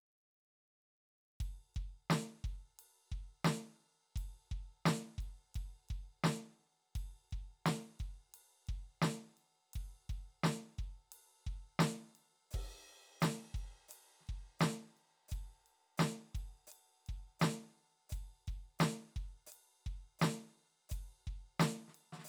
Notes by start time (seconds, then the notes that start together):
1.40 kick, ride
1.75 kick, ride
2.10 snare, ride
2.44 kick, ride
2.79 ride
3.12 kick, ride
3.44 snare, ride
4.16 kick, ride
4.51 kick
4.85 snare, ride
5.18 kick, ride
5.55 kick, ride
5.89 kick, ride
6.24 snare, ride
6.95 kick, ride
7.31 kick, ride
7.66 snare, ride
7.99 kick, ride
8.34 ride
8.67 kick, ride
9.02 snare, ride
9.37 ride
9.73 kick, ride
10.09 kick, ride
10.43 snare, ride
10.78 kick, ride
11.12 ride
11.47 kick, ride
11.79 snare, ride
12.15 ride
12.51 kick, hi-hat pedal, crash
12.85 ride
13.20 snare, hi-hat pedal, ride
13.54 kick, ride
13.88 hi-hat pedal, ride
14.20 snare
14.27 kick, ride
14.59 snare, hi-hat pedal, ride
14.67 snare
14.97 ride
15.28 kick, hi-hat pedal, ride
15.66 ride
15.98 snare, hi-hat pedal, ride
16.35 kick, ride
16.67 hi-hat pedal
16.72 ride
17.06 kick, ride
17.39 snare, hi-hat pedal, ride
18.09 kick, hi-hat pedal, ride
18.47 kick, ride
18.79 snare, hi-hat pedal, ride
19.16 kick, ride
19.47 hi-hat pedal
19.52 ride
19.86 kick, ride
20.19 snare, hi-hat pedal, ride
20.89 kick, hi-hat pedal, ride
21.26 kick, ride
21.59 snare, hi-hat pedal, ride
21.88 snare
21.94 ride
22.12 snare
22.19 snare
22.24 snare, hi-hat pedal